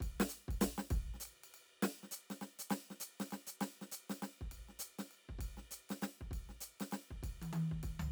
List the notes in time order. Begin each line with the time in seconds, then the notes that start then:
0.01 kick, ride
0.21 snare
0.29 hi-hat pedal
0.34 ride
0.49 kick, ride
0.61 snare, hi-hat pedal
0.79 snare
0.91 kick, ride
1.15 snare
1.21 hi-hat pedal
1.26 ride
1.44 ride
1.55 ride
1.83 snare, ride
2.04 snare
2.12 hi-hat pedal, ride
2.31 snare, hi-hat pedal, ride
2.42 snare, ride
2.60 hi-hat pedal
2.71 snare, ride
2.91 snare
3.01 hi-hat pedal, ride
3.21 snare, ride
3.31 snare, ride
3.47 hi-hat pedal
3.61 snare, ride
3.82 snare
3.92 hi-hat pedal, ride
4.10 snare, ride
4.23 snare, ride
4.42 kick
4.52 kick, ride
4.69 snare
4.80 hi-hat pedal, ride
4.99 snare, ride
5.12 ride
5.29 kick
5.39 kick, ride
5.58 snare
5.72 hi-hat pedal, ride
5.90 snare, ride
6.02 snare, ride
6.21 kick
6.32 kick, ride
6.50 snare
6.61 hi-hat pedal, ride
6.81 snare, ride
6.92 snare, ride
7.11 kick
7.23 kick, ride
7.42 high tom, ride
7.53 high tom, ride
7.72 kick
7.84 kick, ride
8.00 floor tom, ride